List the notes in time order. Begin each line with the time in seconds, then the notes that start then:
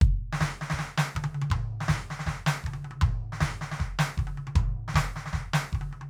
0.04 kick
0.33 snare
0.40 kick, snare
0.61 snare
0.70 kick, snare
0.79 snare
0.98 snare
1.15 kick, high tom
1.24 high tom
1.34 high tom
1.42 high tom
1.50 kick, mid tom
1.80 snare
1.88 kick, snare
2.10 snare
2.19 snare
2.26 kick, snare
2.46 snare
2.64 kick, high tom
2.73 high tom
2.84 high tom
2.91 high tom
3.01 kick, mid tom
3.32 snare
3.40 kick, snare
3.61 snare
3.71 snare
3.79 kick, snare
3.99 snare
4.17 kick, high tom
4.27 high tom
4.37 high tom
4.47 high tom
4.55 kick, mid tom
4.88 snare
4.94 kick, snare
5.16 snare
5.26 snare
5.33 kick, snare
5.53 snare
5.73 kick, high tom
5.81 high tom
5.91 snare, high tom
6.01 high tom